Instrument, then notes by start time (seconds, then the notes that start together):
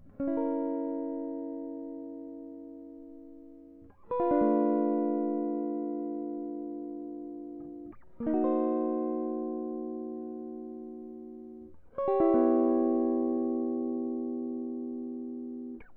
electric guitar
0.19 C#4
0.29 E4
0.38 A#4
4.12 B4
4.21 F4
4.33 D4
4.45 A3
8.20 A#3
8.26 D#4
8.36 F#4
8.45 C5
11.99 C#5
12.09 G4
12.24 E4
12.36 B3